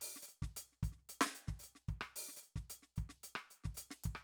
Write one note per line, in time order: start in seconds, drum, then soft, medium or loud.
0.01 open hi-hat medium
0.16 snare soft
0.22 hi-hat pedal medium
0.28 closed hi-hat soft
0.42 kick soft
0.42 snare soft
0.56 closed hi-hat medium
0.72 snare soft
0.83 closed hi-hat soft
0.83 kick soft
0.92 snare soft
0.98 snare soft
1.09 closed hi-hat soft
1.21 snare loud
1.26 snare soft
1.35 closed hi-hat soft
1.47 kick soft
1.47 snare soft
1.59 closed hi-hat soft
1.59 hi-hat pedal soft
1.75 snare soft
1.88 closed hi-hat soft
1.88 kick soft
2.01 cross-stick medium
2.16 open hi-hat medium
2.28 snare soft
2.36 hi-hat pedal medium
2.42 closed hi-hat soft
2.56 kick soft
2.56 snare soft
2.70 closed hi-hat medium
2.82 snare soft
2.96 closed hi-hat soft
2.96 kick soft
3.09 snare soft
3.23 closed hi-hat soft
3.35 cross-stick medium
3.50 closed hi-hat soft
3.64 kick soft
3.64 snare soft
3.74 closed hi-hat medium
3.74 hi-hat pedal soft
3.90 snare soft
4.04 kick soft
4.04 closed hi-hat medium
4.15 cross-stick medium